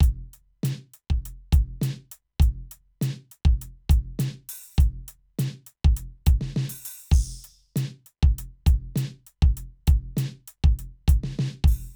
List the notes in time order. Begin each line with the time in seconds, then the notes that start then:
0.01 closed hi-hat, kick
0.34 closed hi-hat
0.64 closed hi-hat, snare
0.94 closed hi-hat
1.10 kick
1.26 closed hi-hat
1.53 closed hi-hat, kick
1.82 closed hi-hat, snare
2.12 closed hi-hat
2.40 closed hi-hat, kick
2.72 closed hi-hat
3.02 closed hi-hat, snare
3.32 closed hi-hat
3.46 kick
3.62 closed hi-hat
3.90 closed hi-hat, kick
4.20 closed hi-hat, snare
4.49 open hi-hat
4.77 closed hi-hat, kick, hi-hat pedal
5.08 closed hi-hat
5.39 closed hi-hat, snare
5.67 closed hi-hat
5.85 kick
5.97 closed hi-hat
6.27 closed hi-hat, kick
6.42 snare
6.57 snare
6.70 open hi-hat
6.86 open hi-hat
7.12 kick, hi-hat pedal, crash
7.45 closed hi-hat
7.76 closed hi-hat, snare
8.07 closed hi-hat
8.23 kick, snare
8.39 closed hi-hat
8.67 closed hi-hat, kick
8.96 closed hi-hat, snare
9.27 closed hi-hat
9.43 kick
9.57 closed hi-hat
9.88 closed hi-hat, kick
10.17 closed hi-hat, snare
10.48 closed hi-hat
10.64 kick
10.79 closed hi-hat
11.08 closed hi-hat, kick
11.24 snare
11.39 snare
11.64 open hi-hat, kick
11.72 open hi-hat